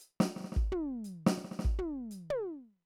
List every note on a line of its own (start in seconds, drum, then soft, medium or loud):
0.00 hi-hat pedal medium
0.20 snare medium
0.36 snare soft
0.40 snare soft
0.44 snare soft
0.52 snare soft
0.56 kick medium
0.71 floor tom loud
1.04 hi-hat pedal medium
1.26 snare loud
1.37 snare soft
1.44 snare soft
1.51 snare soft
1.59 snare soft
1.65 kick soft
1.78 floor tom medium
2.11 hi-hat pedal medium
2.30 high tom loud